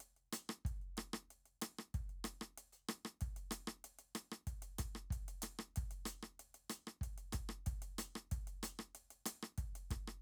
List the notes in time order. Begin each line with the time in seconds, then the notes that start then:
0.01 closed hi-hat
0.17 closed hi-hat
0.33 closed hi-hat, cross-stick
0.50 cross-stick
0.66 kick, closed hi-hat
0.82 closed hi-hat
0.98 cross-stick, closed hi-hat
1.14 cross-stick
1.31 closed hi-hat
1.46 closed hi-hat
1.62 cross-stick, closed hi-hat
1.79 cross-stick
1.95 kick, closed hi-hat
2.10 closed hi-hat
2.25 cross-stick, closed hi-hat
2.42 cross-stick
2.58 closed hi-hat
2.73 closed hi-hat
2.89 cross-stick, closed hi-hat
3.06 cross-stick
3.22 kick, closed hi-hat
3.37 closed hi-hat
3.52 cross-stick, closed hi-hat
3.68 cross-stick
3.85 closed hi-hat
3.99 closed hi-hat
4.16 cross-stick, closed hi-hat
4.32 cross-stick
4.48 kick, closed hi-hat
4.63 closed hi-hat
4.79 kick, cross-stick, closed hi-hat
4.96 cross-stick
5.11 kick, closed hi-hat
5.29 closed hi-hat
5.43 cross-stick, closed hi-hat
5.60 cross-stick
5.77 kick, closed hi-hat
5.92 closed hi-hat
6.06 closed hi-hat, cross-stick
6.24 cross-stick
6.40 closed hi-hat
6.55 closed hi-hat
6.70 closed hi-hat, cross-stick
6.88 cross-stick
7.02 kick, closed hi-hat
7.18 closed hi-hat
7.33 kick, cross-stick, closed hi-hat
7.50 cross-stick
7.67 kick, closed hi-hat
7.83 closed hi-hat
7.99 closed hi-hat, cross-stick
8.16 cross-stick
8.32 kick, closed hi-hat
8.48 closed hi-hat
8.64 closed hi-hat, cross-stick
8.80 cross-stick
8.96 closed hi-hat
9.11 closed hi-hat
9.26 cross-stick, closed hi-hat
9.43 cross-stick
9.59 kick, closed hi-hat
9.76 closed hi-hat
9.91 kick, cross-stick, closed hi-hat
10.08 cross-stick